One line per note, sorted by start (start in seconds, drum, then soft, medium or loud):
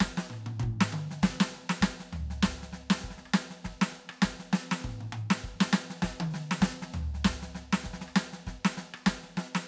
0.01 kick soft
0.01 snare loud
0.18 snare medium
0.31 cross-stick soft
0.31 hi-hat pedal soft
0.31 mid tom medium
0.47 mid tom loud
0.60 kick soft
0.60 mid tom loud
0.81 snare loud
0.93 hi-hat pedal soft
0.93 high tom loud
1.11 snare medium
1.23 kick soft
1.23 snare loud
1.41 snare loud
1.52 snare soft
1.52 hi-hat pedal soft
1.70 snare loud
1.82 kick soft
1.82 snare loud
2.00 snare soft
2.13 floor tom loud
2.13 hi-hat pedal soft
2.31 snare soft
2.43 kick soft
2.43 snare loud
2.63 snare soft
2.73 snare medium
2.73 hi-hat pedal soft
2.91 snare loud
3.01 kick soft
3.01 snare soft
3.11 snare soft
3.18 snare soft
3.26 cross-stick soft
3.34 snare loud
3.34 hi-hat pedal soft
3.51 snare soft
3.65 kick soft
3.65 snare medium
3.82 snare loud
3.92 snare soft
3.92 hi-hat pedal soft
4.10 cross-stick medium
4.22 kick soft
4.22 snare loud
4.40 snare soft
4.53 snare loud
4.53 hi-hat pedal soft
4.72 snare loud
4.82 kick soft
4.82 snare soft
4.82 mid tom medium
4.90 snare soft
5.01 mid tom medium
5.13 hi-hat pedal soft
5.13 mid tom loud
5.18 mid tom soft
5.31 snare loud
5.44 kick soft
5.61 snare loud
5.73 snare loud
5.73 hi-hat pedal soft
5.91 snare medium
6.03 kick soft
6.03 snare loud
6.21 high tom loud
6.31 snare medium
6.31 hi-hat pedal soft
6.52 snare loud
6.61 kick soft
6.61 snare loud
6.83 snare medium
6.94 floor tom loud
6.94 hi-hat pedal medium
7.15 snare soft
7.25 kick soft
7.25 snare loud
7.31 kick soft
7.43 snare medium
7.55 snare medium
7.55 hi-hat pedal medium
7.73 snare loud
7.84 kick soft
7.84 snare medium
7.94 snare medium
8.02 snare medium
8.08 cross-stick soft
8.16 snare loud
8.16 hi-hat pedal soft
8.33 snare medium
8.47 kick soft
8.47 snare medium
8.65 snare loud
8.76 snare medium
8.76 hi-hat pedal soft
8.94 cross-stick medium
9.07 kick soft
9.07 snare loud
9.24 snare soft
9.38 snare medium
9.38 hi-hat pedal soft
9.55 snare loud